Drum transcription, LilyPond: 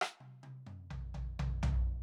\new DrumStaff \drummode { \time 4/4 \tempo 4 = 63 ss16 tommh16 tommh16 toml16 tomfh16 tomfh16 tomfh16 tomfh16 r4 r4 | }